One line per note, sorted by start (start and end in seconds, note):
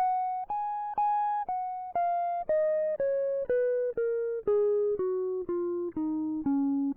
0.00 0.48 F#5
0.51 0.98 G#5
0.98 1.47 G#5
1.49 1.96 F#5
1.96 2.45 F5
2.50 2.99 D#5
3.01 3.47 C#5
3.50 3.95 B4
3.98 4.42 A#4
4.48 4.99 G#4
5.00 5.47 F#4
5.50 5.93 F4
5.97 6.46 D#4
6.47 6.96 C#4